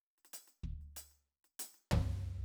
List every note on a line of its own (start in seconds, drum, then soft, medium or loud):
0.18 percussion soft
0.25 percussion soft
0.33 percussion medium
0.48 percussion soft
0.63 kick soft
0.81 percussion soft
0.96 percussion medium
1.11 percussion soft
1.44 percussion soft
1.59 percussion loud
1.74 percussion soft
1.91 kick soft
1.91 floor tom loud